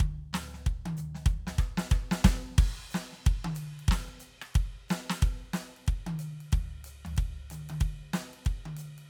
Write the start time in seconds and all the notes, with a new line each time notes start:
0.01 kick, floor tom
0.34 snare, floor tom, hi-hat pedal
0.55 snare
0.67 kick, floor tom
0.86 high tom
0.98 floor tom, hi-hat pedal
1.16 snare
1.27 kick, floor tom, hi-hat pedal
1.48 snare
1.59 kick, cross-stick, hi-hat pedal
1.78 snare
1.91 kick, cross-stick, hi-hat pedal
2.12 snare
2.21 snare, hi-hat pedal
2.25 kick
2.59 kick, crash
2.91 kick, snare, hi-hat pedal
3.13 snare
3.27 kick, ride
3.45 high tom
3.56 hi-hat pedal, ride
3.80 ride
3.89 kick, snare, ride
4.08 snare
4.21 hi-hat pedal, ride
4.43 cross-stick, ride
4.55 kick, ride
4.89 snare, hi-hat pedal, ride
5.10 snare
5.23 kick, ride
5.54 snare, hi-hat pedal, ride
5.77 ride
5.88 kick, ride
6.07 high tom
6.20 hi-hat pedal, ride
6.41 ride
6.53 kick, floor tom, ride
6.85 hi-hat pedal, ride
7.06 floor tom, ride
7.18 kick, ride
7.51 hi-hat pedal, high tom, ride
7.70 high tom, ride
7.81 kick, ride
8.14 snare, hi-hat pedal, ride
8.34 ride
8.46 kick, ride
8.66 high tom
8.78 hi-hat pedal, ride
8.99 ride